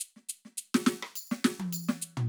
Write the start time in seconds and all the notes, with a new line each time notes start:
0.01 floor tom
0.17 snare
0.29 floor tom
0.45 snare
0.58 floor tom
0.75 snare
0.87 snare
1.03 high tom
1.16 percussion
1.32 snare
1.45 snare
1.60 high tom
1.73 percussion
1.89 snare
2.02 floor tom
2.18 floor tom